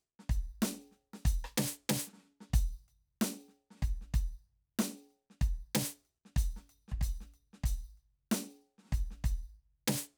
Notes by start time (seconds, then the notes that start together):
0.19 snare
0.30 closed hi-hat, kick
0.62 closed hi-hat, snare
0.92 snare, closed hi-hat
1.14 snare
1.25 closed hi-hat, kick
1.45 cross-stick
1.58 snare
1.89 snare
2.07 snare
2.13 snare
2.21 snare
2.41 snare
2.50 kick
2.54 closed hi-hat, kick
2.88 closed hi-hat
3.22 closed hi-hat, snare
3.49 snare, closed hi-hat
3.71 snare
3.75 snare
3.78 snare
3.83 closed hi-hat, kick, snare
4.01 snare
4.14 closed hi-hat, kick
4.46 closed hi-hat
4.79 closed hi-hat, snare
5.11 closed hi-hat
5.30 snare
5.41 closed hi-hat, kick
5.75 closed hi-hat, snare
6.05 closed hi-hat
6.25 snare
6.36 closed hi-hat, kick
6.57 snare
6.70 closed hi-hat
6.88 kick, snare
7.01 closed hi-hat, kick
7.21 snare
7.34 closed hi-hat
7.53 snare
7.64 closed hi-hat, kick
7.98 closed hi-hat
8.32 closed hi-hat, snare
8.78 snare
8.82 snare
8.85 snare
8.87 snare
8.89 kick, snare
8.94 closed hi-hat
9.11 snare
9.24 closed hi-hat, kick
9.88 snare